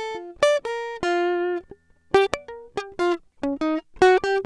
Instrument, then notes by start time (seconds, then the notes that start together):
acoustic guitar
0.00 A4
0.17 F4
0.44 D5
0.67 A#4
1.04 F4
2.16 G4
2.35 D5
2.50 A#4
2.79 G4
3.00 F4
3.45 C#4
3.62 D#4
4.03 F#4
4.25 G4